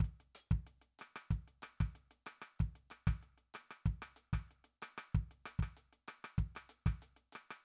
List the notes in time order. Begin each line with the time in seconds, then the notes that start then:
0.01 kick, closed hi-hat
0.21 closed hi-hat
0.36 closed hi-hat
0.52 kick
0.68 closed hi-hat
0.82 closed hi-hat
1.00 cross-stick, closed hi-hat
1.17 cross-stick
1.31 kick, closed hi-hat
1.49 closed hi-hat
1.63 cross-stick, closed hi-hat
1.81 kick, cross-stick
1.96 closed hi-hat
2.12 closed hi-hat
2.27 cross-stick, closed hi-hat
2.43 cross-stick
2.60 kick, closed hi-hat
2.76 closed hi-hat
2.91 cross-stick, closed hi-hat
3.08 kick, cross-stick
3.24 closed hi-hat
3.39 closed hi-hat
3.55 cross-stick, closed hi-hat
3.72 cross-stick
3.87 kick, closed hi-hat
4.03 cross-stick, closed hi-hat
4.17 closed hi-hat
4.34 kick, cross-stick
4.52 closed hi-hat
4.65 closed hi-hat
4.83 cross-stick, closed hi-hat
4.99 cross-stick
5.15 kick, closed hi-hat
5.32 closed hi-hat
5.46 cross-stick, closed hi-hat
5.60 kick, cross-stick
5.78 closed hi-hat
5.93 closed hi-hat
6.09 cross-stick, closed hi-hat
6.25 cross-stick
6.39 kick, closed hi-hat
6.56 cross-stick, closed hi-hat
6.70 closed hi-hat
6.87 kick, cross-stick
7.03 closed hi-hat
7.17 closed hi-hat
7.33 cross-stick, closed hi-hat
7.51 cross-stick